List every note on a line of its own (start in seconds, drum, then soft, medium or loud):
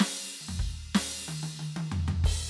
0.01 snare loud
0.01 crash loud
0.41 high tom soft
0.49 floor tom loud
0.60 kick medium
0.95 snare loud
0.95 crash loud
1.29 high tom loud
1.43 high tom loud
1.60 high tom medium
1.77 high tom loud
1.92 floor tom loud
2.08 floor tom loud
2.24 kick medium
2.24 crash loud